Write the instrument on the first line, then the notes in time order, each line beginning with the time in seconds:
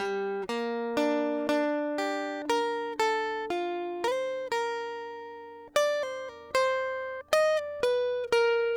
acoustic guitar
0.00 G3
0.50 A#3
0.98 D4
1.50 D4
1.99 G4
2.50 A#4
3.00 A4
3.51 F4
4.05 B4
4.17 C5
4.52 A#4
5.77 D5
6.04 C5
6.30 A#4
6.55 C5
7.33 D#5
7.58 D5
7.84 B4
8.33 A#4